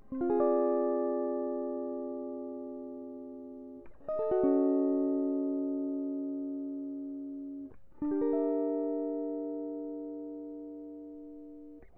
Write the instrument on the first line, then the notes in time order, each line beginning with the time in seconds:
electric guitar
0.19 C4 F4
0.30 G#4
0.40 D5
4.09 D#5
4.20 A4
4.31 F#4
4.44 C#4
8.01 D4
8.11 G4
8.22 A#4
8.34 E5